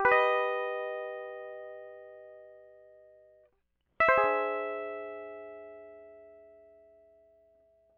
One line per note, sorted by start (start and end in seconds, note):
0.00 3.49 G4
0.05 3.49 B4
0.12 3.48 D#5
4.01 7.98 E5
4.09 6.08 C5
4.18 7.77 G#4
4.27 6.44 D4